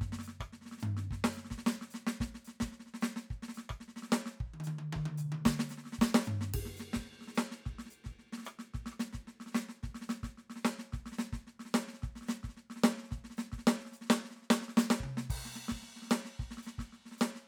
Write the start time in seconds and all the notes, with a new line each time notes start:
0.01 kick, snare
0.07 kick
0.12 snare
0.19 snare
0.23 hi-hat pedal
0.28 snare
0.40 kick, cross-stick
0.53 snare
0.61 snare
0.66 snare
0.72 snare
0.78 snare, hi-hat pedal
0.83 floor tom
0.97 snare
1.11 kick, snare
1.19 kick
1.24 snare
1.33 snare, hi-hat pedal
1.45 snare
1.51 kick, snare
1.58 snare
1.67 snare
1.81 snare
1.91 snare, hi-hat pedal
2.07 snare
2.21 kick, snare
2.27 kick
2.35 snare
2.45 snare, hi-hat pedal
2.60 kick, snare
2.72 snare
2.80 snare
2.86 snare
2.94 snare
3.01 snare, hi-hat pedal
3.16 snare
3.31 kick, snare
3.37 kick
3.43 snare
3.49 snare
3.54 snare, hi-hat pedal
3.70 kick, cross-stick
3.80 snare
3.88 snare
3.96 snare
4.03 snare
4.09 snare
4.12 snare, hi-hat pedal
4.26 snare
4.40 kick
4.47 kick
4.54 high tom
4.60 hi-hat pedal, high tom
4.67 high tom
4.79 high tom
4.93 kick, high tom
5.01 kick
5.06 high tom
5.18 hi-hat pedal, mid tom
5.32 high tom
5.46 kick, snare
5.59 snare
5.69 snare, hi-hat pedal
5.78 snare
5.84 snare
5.86 snare
5.93 snare
5.99 kick, snare
6.15 snare
6.19 snare
6.24 floor tom, hi-hat pedal
6.41 snare
6.54 kick, ride
6.59 kick
6.66 kick, snare
6.77 snare, hi-hat pedal
6.93 kick, snare
7.05 snare
7.12 snare
7.18 snare
7.21 snare
7.28 snare
7.34 snare, hi-hat pedal
7.38 snare
7.51 snare
7.66 kick, snare
7.73 kick
7.79 snare
7.86 snare
7.90 hi-hat pedal
8.04 kick, snare
8.06 snare
8.11 kick
8.19 snare
8.26 snare
8.33 snare
8.38 snare
8.42 snare, hi-hat pedal
8.47 cross-stick
8.59 snare
8.74 kick, snare
8.80 kick
8.86 snare
8.92 cross-stick
9.00 snare, hi-hat pedal
9.13 kick, snare
9.27 snare
9.40 snare
9.46 snare
9.52 snare
9.55 snare, hi-hat pedal
9.69 snare
9.83 kick, snare
9.89 kick
9.95 snare
10.01 snare
10.08 snare, hi-hat pedal
10.09 snare
10.23 kick, snare
10.29 kick
10.38 snare
10.50 snare
10.56 snare
10.62 snare
10.65 snare, hi-hat pedal
10.79 snare
10.93 kick, snare
11.00 kick
11.06 snare
11.12 snare
11.18 snare, hi-hat pedal
11.33 kick, snare
11.47 snare
11.60 snare
11.65 snare
11.71 snare
11.74 snare, hi-hat pedal
11.88 snare
11.94 snare
12.02 kick, snare
12.10 kick
12.16 snare
12.21 snare
12.26 snare, hi-hat pedal
12.29 snare
12.43 kick, snare
12.49 snare
12.57 snare
12.70 snare
12.76 snare
12.81 snare
12.84 snare, hi-hat pedal
12.98 snare
13.03 snare
13.11 kick, snare
13.18 kick
13.24 snare
13.30 snare
13.36 snare, hi-hat pedal
13.38 snare
13.52 kick, snare
13.58 snare
13.67 snare
13.79 snare
13.85 snare
13.92 snare, hi-hat pedal
14.01 snare
14.05 snare
14.09 snare
14.25 snare
14.31 snare
14.36 snare
14.42 snare
14.50 snare, hi-hat pedal
14.62 snare
14.68 snare
14.77 snare, hi-hat pedal
14.90 snare
15.00 kick, mid tom
15.06 kick
15.17 snare
15.30 kick, crash
15.44 kick, snare
15.54 snare, hi-hat pedal
15.69 kick, snare
15.82 snare
15.88 snare
15.93 snare
15.96 snare
16.02 snare
16.07 snare, hi-hat pedal
16.11 snare
16.25 snare
16.40 kick, snare
16.46 kick
16.51 snare
16.57 snare
16.63 snare, hi-hat pedal
16.79 kick, snare
16.93 snare
17.00 snare
17.04 snare
17.12 snare
17.17 snare, hi-hat pedal
17.21 snare
17.35 snare